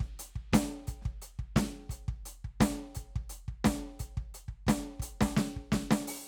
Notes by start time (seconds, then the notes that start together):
0.01 kick, snare
0.06 snare
0.20 closed hi-hat
0.36 kick
0.53 closed hi-hat, kick, snare
0.69 snare
0.88 closed hi-hat, kick
1.02 kick, snare
1.22 closed hi-hat
1.40 kick
1.57 closed hi-hat, kick, snare
1.72 cross-stick
1.90 closed hi-hat, kick
2.09 kick
2.26 closed hi-hat
2.45 kick
2.61 closed hi-hat, kick, snare
2.77 snare
2.84 snare
2.96 closed hi-hat, kick
3.16 kick
3.30 closed hi-hat
3.49 kick
3.65 closed hi-hat, kick, snare
4.00 closed hi-hat, kick
4.18 kick
4.35 closed hi-hat
4.49 kick
4.67 closed hi-hat, kick, snare
5.00 closed hi-hat, kick
5.21 kick, snare
5.37 snare
5.57 kick
5.73 kick, snare
5.91 snare
6.08 open hi-hat